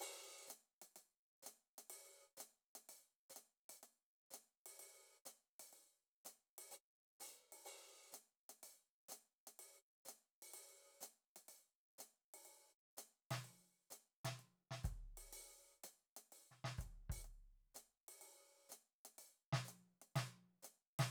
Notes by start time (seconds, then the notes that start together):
0.00 open hi-hat
0.47 closed hi-hat, hi-hat pedal
0.82 open hi-hat
0.96 open hi-hat
1.42 closed hi-hat, hi-hat pedal
1.78 closed hi-hat
1.90 open hi-hat
2.37 closed hi-hat, hi-hat pedal
2.75 open hi-hat
2.89 open hi-hat
3.30 hi-hat pedal
3.36 closed hi-hat
3.69 open hi-hat
3.83 open hi-hat
4.30 closed hi-hat, hi-hat pedal
4.66 open hi-hat
4.79 open hi-hat
5.25 closed hi-hat, hi-hat pedal
5.59 open hi-hat
5.73 open hi-hat
6.25 closed hi-hat, hi-hat pedal
6.58 open hi-hat
6.71 open hi-hat
7.20 open hi-hat, hi-hat pedal
7.52 open hi-hat
7.65 open hi-hat
8.12 closed hi-hat, hi-hat pedal
8.49 closed hi-hat
8.63 open hi-hat
9.08 closed hi-hat, hi-hat pedal
9.47 closed hi-hat
9.59 open hi-hat
10.05 closed hi-hat, hi-hat pedal
10.42 open hi-hat
10.54 open hi-hat
11.01 closed hi-hat, hi-hat pedal
11.36 open hi-hat
11.48 open hi-hat
11.98 closed hi-hat, hi-hat pedal
12.34 open hi-hat
12.45 open hi-hat
12.97 closed hi-hat, hi-hat pedal
13.30 snare, open hi-hat
13.44 open hi-hat
13.90 closed hi-hat, hi-hat pedal
14.25 snare, open hi-hat
14.39 open hi-hat
14.71 snare
14.83 kick, closed hi-hat, hi-hat pedal
15.17 open hi-hat
15.33 open hi-hat
15.83 hi-hat pedal, open hi-hat
16.16 closed hi-hat
16.32 open hi-hat
16.51 snare
16.64 snare
16.77 kick, closed hi-hat, hi-hat pedal
17.09 kick, open hi-hat
17.24 open hi-hat
17.74 closed hi-hat, hi-hat pedal
18.08 open hi-hat
18.21 open hi-hat
18.69 closed hi-hat, hi-hat pedal
19.05 closed hi-hat
19.18 open hi-hat
19.53 snare
19.64 closed hi-hat, hi-hat pedal
20.02 closed hi-hat
20.16 snare, open hi-hat
20.62 closed hi-hat, hi-hat pedal
20.99 snare, open hi-hat